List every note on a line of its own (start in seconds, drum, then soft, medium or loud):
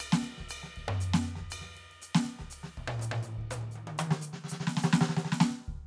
0.01 hi-hat pedal loud
0.01 ride bell loud
0.14 snare loud
0.23 hi-hat pedal soft
0.23 ride soft
0.39 kick soft
0.39 snare soft
0.50 hi-hat pedal loud
0.50 ride bell loud
0.65 snare soft
0.78 kick soft
0.78 ride soft
0.90 floor tom loud
1.02 hi-hat pedal loud
1.02 ride medium
1.15 snare loud
1.24 hi-hat pedal soft
1.37 snare soft
1.42 kick soft
1.52 hi-hat pedal medium
1.52 ride bell loud
1.62 snare soft
1.70 snare soft
1.74 snare soft
1.74 hi-hat pedal soft
1.78 snare soft
1.78 ride soft
1.85 snare soft
1.88 snare soft
1.93 ride soft
2.03 hi-hat pedal loud
2.03 ride medium
2.16 snare loud
2.21 cross-stick medium
2.21 hi-hat pedal medium
2.28 ride soft
2.40 kick soft
2.40 snare soft
2.52 hi-hat pedal medium
2.52 ride medium
2.65 snare medium
2.74 hi-hat pedal soft
2.79 kick soft
2.79 mid tom medium
2.89 mid tom loud
3.01 hi-hat pedal loud
3.01 mid tom medium
3.13 mid tom loud
3.24 hi-hat pedal medium
3.24 mid tom medium
3.39 kick soft
3.39 high tom soft
3.45 kick soft
3.52 hi-hat pedal loud
3.52 mid tom loud
3.63 high tom soft
3.73 hi-hat pedal soft
3.77 high tom medium
3.89 high tom loud
4.00 hi-hat pedal loud
4.00 high tom loud
4.12 snare loud
4.23 hi-hat pedal loud
4.35 snare medium
4.46 snare medium
4.50 snare medium
4.50 hi-hat pedal loud
4.61 snare medium
4.69 snare medium
4.78 snare loud
4.84 snare loud
4.84 hi-hat pedal medium
4.94 snare loud
5.03 snare loud
5.11 snare medium
5.18 snare loud
5.26 snare medium
5.34 snare loud
5.42 snare loud
5.52 snare soft
5.70 kick medium